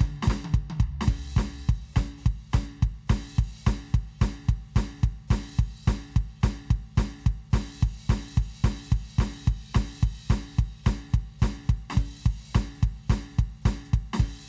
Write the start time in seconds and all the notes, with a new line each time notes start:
0.01 kick, high tom
0.23 snare, hi-hat pedal
0.28 kick, snare
0.45 high tom
0.54 kick
0.70 high tom
0.80 kick, floor tom
1.01 snare
1.08 kick, crash
1.36 closed hi-hat, kick, snare, hi-hat pedal
1.58 open hi-hat
1.69 kick, open hi-hat
1.93 kick, snare, hi-hat pedal
1.97 closed hi-hat
2.18 open hi-hat
2.26 open hi-hat, kick
2.51 closed hi-hat, kick, snare, hi-hat pedal
2.82 open hi-hat, kick
3.08 kick, snare, hi-hat pedal, crash
3.39 open hi-hat, kick
3.65 closed hi-hat, kick, snare, hi-hat pedal
3.86 open hi-hat
3.94 open hi-hat, kick
4.19 closed hi-hat, kick, snare, hi-hat pedal
4.43 open hi-hat
4.49 open hi-hat, kick
4.75 closed hi-hat, kick, snare, hi-hat pedal
4.97 open hi-hat
5.03 open hi-hat, kick
5.28 kick, snare, hi-hat pedal, crash
5.59 open hi-hat, kick
5.86 closed hi-hat, kick, snare, hi-hat pedal
6.09 open hi-hat
6.16 open hi-hat, kick
6.41 closed hi-hat, kick, snare, hi-hat pedal
6.64 open hi-hat
6.71 open hi-hat, kick
6.95 closed hi-hat, kick, snare, hi-hat pedal
7.18 open hi-hat
7.26 open hi-hat, kick
7.51 kick, snare, hi-hat pedal, crash
7.83 open hi-hat, kick
8.08 kick, snare, hi-hat pedal, crash
8.38 open hi-hat, kick
8.62 kick, snare, hi-hat pedal, crash
8.92 open hi-hat, kick
9.16 kick, hi-hat pedal
9.20 snare, crash
9.48 kick, crash
9.73 kick, snare, hi-hat pedal, crash
10.03 kick, crash
10.29 closed hi-hat, kick, snare, hi-hat pedal
10.51 open hi-hat
10.59 open hi-hat, kick
10.84 closed hi-hat, kick, snare, hi-hat pedal
11.09 open hi-hat
11.14 open hi-hat, kick
11.39 closed hi-hat, kick, snare, hi-hat pedal
11.63 open hi-hat
11.69 open hi-hat, kick
11.90 snare, hi-hat pedal
11.97 kick, crash
12.26 open hi-hat, kick
12.52 kick, snare, hi-hat pedal
12.56 closed hi-hat
12.75 open hi-hat
12.83 open hi-hat, kick
13.08 closed hi-hat, kick, snare, hi-hat pedal
13.30 open hi-hat
13.39 open hi-hat, kick
13.62 closed hi-hat, kick, snare, hi-hat pedal
13.85 closed hi-hat
13.94 open hi-hat, kick
14.13 snare, hi-hat pedal
14.20 kick, crash